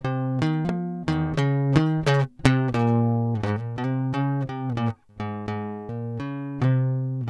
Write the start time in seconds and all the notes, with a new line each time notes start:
0.06 C3
0.43 D#3
0.67 F3
1.09 E2 D#3
1.39 C#3
1.77 D#3
2.08 C#3
2.46 C3
2.76 A#2
3.37 G#2
3.58 A#2
3.80 C3
4.15 C#3
4.51 C3
4.79 A#2
5.21 G#2
5.50 G#2
5.91 A#2
6.21 C#3
6.63 C3